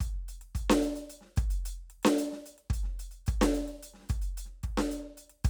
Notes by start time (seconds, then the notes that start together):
0.01 closed hi-hat, kick
0.14 snare
0.28 closed hi-hat, snare
0.42 closed hi-hat
0.55 closed hi-hat, kick
0.70 snare
0.83 closed hi-hat
0.96 closed hi-hat
1.10 closed hi-hat
1.22 snare
1.25 snare
1.37 closed hi-hat, kick
1.51 closed hi-hat, snare
1.66 closed hi-hat
1.91 closed hi-hat
2.04 snare, closed hi-hat
2.19 closed hi-hat
2.33 snare
2.35 snare
2.46 closed hi-hat
2.59 closed hi-hat
2.71 closed hi-hat, kick
2.84 snare
2.88 snare
2.92 snare
2.96 snare
3.00 closed hi-hat
3.12 closed hi-hat
3.27 closed hi-hat, kick
3.42 snare
3.55 closed hi-hat
3.68 closed hi-hat
3.83 closed hi-hat
3.94 snare
3.98 snare
4.01 snare
4.03 snare
4.07 closed hi-hat, kick, snare
4.22 closed hi-hat
4.38 closed hi-hat
4.46 snare
4.64 kick, closed hi-hat
4.78 snare, closed hi-hat
4.92 closed hi-hat
5.00 snare
5.03 snare
5.18 closed hi-hat
5.30 closed hi-hat
5.45 closed hi-hat, kick